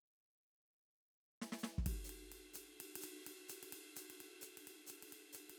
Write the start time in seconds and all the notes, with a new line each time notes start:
1.42 snare
1.52 snare
1.59 hi-hat pedal
1.63 snare
1.78 kick
1.86 kick, ride
2.04 hi-hat pedal
2.09 ride
2.32 ride
2.54 hi-hat pedal, ride
2.80 ride
2.96 ride
3.01 hi-hat pedal, ride
3.23 hi-hat pedal, ride
3.49 hi-hat pedal, ride
3.63 ride
3.70 hi-hat pedal, ride
3.96 hi-hat pedal, ride
4.10 ride
4.20 ride
4.41 hi-hat pedal, ride
4.57 ride
4.62 hi-hat pedal
4.67 ride
4.87 hi-hat pedal, ride
5.03 ride
5.08 hi-hat pedal
5.12 ride
5.33 hi-hat pedal, ride
5.50 ride